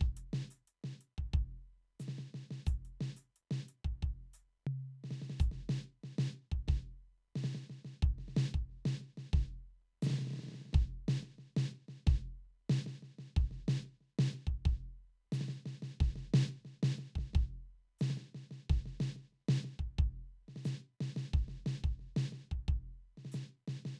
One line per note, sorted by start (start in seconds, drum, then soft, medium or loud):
0.01 kick medium
0.17 closed hi-hat soft
0.33 snare medium
0.50 hi-hat pedal medium
0.68 closed hi-hat soft
0.84 snare soft
1.01 closed hi-hat soft
1.18 kick soft
1.34 kick medium
2.00 snare soft
2.00 hi-hat pedal medium
2.08 snare soft
2.18 snare soft
2.34 snare soft
2.51 snare soft
2.66 kick soft
2.66 hi-hat pedal medium
2.85 closed hi-hat soft
3.01 snare medium
3.16 hi-hat pedal medium
3.36 closed hi-hat soft
3.51 snare medium
3.68 closed hi-hat soft
3.85 kick soft
4.03 kick soft
4.33 hi-hat pedal medium
4.67 floor tom medium
5.04 snare soft
5.11 snare soft
5.22 snare soft
5.30 snare soft
5.40 kick medium
5.40 hi-hat pedal medium
5.52 snare soft
5.69 snare medium
6.04 snare soft
6.18 snare medium
6.35 snare soft
6.52 kick soft
6.68 kick medium
6.68 snare soft
7.36 snare medium
7.44 snare medium
7.55 snare soft
7.70 snare soft
7.85 snare soft
8.03 kick medium
8.18 snare soft
8.28 snare soft
8.37 snare medium
8.54 kick soft
8.70 snare soft
8.86 snare medium
9.01 snare soft
9.18 snare soft
9.33 kick medium
9.33 snare soft
10.02 snare medium
10.02 hi-hat pedal medium
10.07 snare medium
10.10 snare medium
10.13 snare soft
10.19 snare soft
10.22 snare soft
10.25 snare soft
10.27 snare soft
10.31 snare soft
10.34 snare soft
10.36 snare soft
10.39 snare soft
10.44 snare soft
10.47 snare soft
10.49 snare soft
10.52 snare soft
10.54 snare soft
10.59 snare soft
10.62 snare soft
10.66 snare soft
10.73 kick medium
10.73 snare soft
11.08 snare medium
11.23 snare soft
11.38 snare soft
11.57 snare medium
11.73 snare soft
11.88 snare soft
12.07 kick medium
12.07 snare soft
12.70 snare medium
12.86 snare soft
13.03 snare soft
13.19 snare soft
13.37 kick medium
13.37 snare soft
13.51 snare soft
13.68 snare medium
13.85 snare soft
14.01 snare soft
14.19 snare medium
14.33 snare soft
14.47 kick soft
14.65 kick medium
14.65 snare soft
15.32 snare medium
15.32 hi-hat pedal medium
15.41 snare soft
15.48 snare soft
15.66 snare soft
15.82 snare soft
16.00 kick medium
16.00 snare soft
16.16 snare soft
16.34 snare loud
16.49 snare soft
16.65 snare soft
16.83 snare medium
16.98 snare soft
17.16 kick soft
17.16 snare soft
17.34 kick medium
17.34 snare soft
17.99 snare medium
17.99 hi-hat pedal soft
18.10 snare soft
18.17 snare soft
18.35 snare soft
18.51 snare soft
18.70 kick medium
18.70 snare soft
18.86 snare soft
19.00 snare medium
19.16 snare soft
19.33 snare soft
19.49 snare medium
19.64 snare soft
19.79 kick soft
19.99 kick medium
20.48 snare soft
20.56 snare soft
20.65 snare medium
20.65 hi-hat pedal medium
21.01 snare medium
21.16 snare medium
21.34 kick medium
21.34 snare soft
21.48 snare soft
21.66 snare medium
21.84 kick soft
21.84 snare soft
21.99 snare soft
22.17 snare medium
22.32 snare soft
22.51 kick soft
22.68 kick medium
23.18 snare soft
23.25 snare soft
23.32 snare medium
23.32 hi-hat pedal medium
23.68 snare medium
23.85 snare soft